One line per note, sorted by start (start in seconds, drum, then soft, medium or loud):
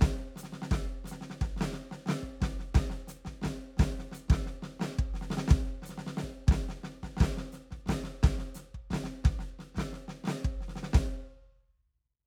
0.01 kick loud
0.01 snare loud
0.17 snare soft
0.36 snare soft
0.36 hi-hat pedal medium
0.43 snare soft
0.52 snare soft
0.62 snare medium
0.71 kick medium
0.71 snare medium
1.04 snare soft
1.04 hi-hat pedal medium
1.12 snare soft
1.21 snare soft
1.30 snare soft
1.41 kick medium
1.41 snare soft
1.56 snare soft
1.61 snare loud
1.73 snare soft
1.91 snare soft
2.06 snare medium
2.09 snare medium
2.23 kick soft
2.41 kick medium
2.41 snare soft
2.42 snare medium
2.59 snare soft
2.75 kick loud
2.75 snare medium
2.90 snare soft
3.07 snare soft
3.07 hi-hat pedal medium
3.25 kick soft
3.25 snare soft
3.42 snare medium
3.44 kick soft
3.44 snare medium
3.77 kick loud
3.77 snare soft
3.80 snare medium
3.99 snare soft
4.12 snare soft
4.12 hi-hat pedal medium
4.28 kick loud
4.28 snare soft
4.31 snare medium
4.46 snare soft
4.62 snare medium
4.80 snare soft
4.81 snare medium
4.99 kick medium
5.14 snare soft
5.21 snare soft
5.30 snare medium
5.37 snare medium
5.48 kick loud
5.48 snare medium
5.65 snare soft
5.82 snare soft
5.82 hi-hat pedal medium
5.89 snare soft
5.98 snare medium
6.06 snare medium
6.17 snare medium
6.23 kick soft
6.47 kick loud
6.47 snare soft
6.51 snare medium
6.69 snare soft
6.84 snare medium
7.03 kick soft
7.03 snare soft
7.17 kick loud
7.17 snare medium
7.21 snare loud
7.37 snare medium
7.52 snare soft
7.52 hi-hat pedal soft
7.71 kick soft
7.71 snare soft
7.86 kick medium
7.86 snare soft
7.89 snare loud
8.04 snare soft
8.23 kick loud
8.23 snare medium
8.38 snare soft
8.54 snare soft
8.54 hi-hat pedal medium
8.74 kick soft
8.90 kick soft
8.90 snare medium
8.93 snare medium
9.04 snare soft
9.24 kick loud
9.24 snare medium
9.39 snare soft
9.59 snare soft
9.75 kick medium
9.75 snare soft
9.78 snare medium
9.93 snare soft
10.08 snare soft
10.24 snare medium
10.27 snare medium
10.45 kick medium
10.61 snare soft
10.68 snare soft
10.76 snare medium
10.83 snare medium
10.93 kick loud
10.93 snare medium